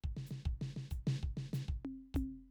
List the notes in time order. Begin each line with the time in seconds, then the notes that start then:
0.04 kick
0.17 snare
0.26 hi-hat pedal
0.31 snare
0.45 kick
0.61 snare
0.76 snare
0.91 kick, hi-hat pedal
1.07 snare
1.23 kick
1.37 snare
1.53 snare, hi-hat pedal
1.68 kick
1.85 high tom
2.14 kick, hi-hat pedal, high tom